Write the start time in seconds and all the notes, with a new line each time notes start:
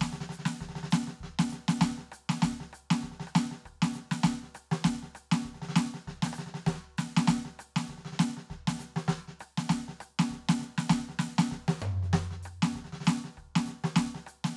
0.01 kick, snare
0.13 snare
0.21 snare
0.30 snare, hi-hat pedal
0.39 snare
0.46 snare
0.61 kick, snare
0.69 snare
0.76 snare
0.84 snare
0.91 snare, hi-hat pedal
1.08 snare
1.21 kick, snare
1.40 snare
1.50 snare, hi-hat pedal
1.69 snare
1.82 kick, snare
1.98 snare
2.12 cross-stick, hi-hat pedal
2.30 snare
2.43 kick, snare
2.61 snare
2.73 cross-stick, hi-hat pedal
2.91 snare
3.04 kick, snare
3.12 snare
3.20 snare
3.28 cross-stick
3.35 snare, hi-hat pedal
3.52 snare
3.66 kick, cross-stick
3.83 snare
3.94 snare, hi-hat pedal
4.12 snare
4.24 kick, snare
4.44 snare
4.55 cross-stick, hi-hat pedal
4.72 snare
4.85 kick, snare
5.03 snare
5.16 cross-stick, hi-hat pedal
5.32 snare
5.45 kick, snare
5.62 snare
5.69 snare
5.76 snare, hi-hat pedal
5.94 snare
6.08 kick, snare
6.23 cross-stick, snare
6.33 cross-stick, hi-hat pedal
6.39 snare
6.47 snare
6.55 snare
6.63 snare
6.67 kick, snare
6.73 snare
6.98 snare, hi-hat pedal
7.17 snare
7.28 kick, snare
7.46 snare
7.60 cross-stick, hi-hat pedal
7.77 snare
7.89 kick, snare
7.98 snare
8.06 snare
8.13 snare
8.20 snare, hi-hat pedal
8.38 snare
8.51 kick, snare
8.68 snare
8.80 snare, hi-hat pedal
8.97 snare
9.09 kick, snare
9.28 snare
9.40 cross-stick, hi-hat pedal
9.58 snare
9.70 kick, snare
9.89 snare
10.01 cross-stick, hi-hat pedal
10.20 snare
10.31 kick, snare
10.49 snare
10.62 snare, hi-hat pedal
10.78 snare
10.90 kick, snare
11.09 snare
11.20 snare, hi-hat pedal
11.39 snare
11.52 kick, snare
11.69 snare
11.81 floor tom, hi-hat pedal
12.03 snare
12.14 kick, snare
12.31 snare
12.43 cross-stick, hi-hat pedal
12.63 snare
12.76 kick, snare
12.85 snare
12.93 snare
13.01 snare
13.05 snare, hi-hat pedal
13.25 snare
13.38 kick, cross-stick
13.56 snare
13.66 snare, hi-hat pedal
13.84 snare
13.96 kick, snare
14.15 snare
14.27 cross-stick, hi-hat pedal
14.45 snare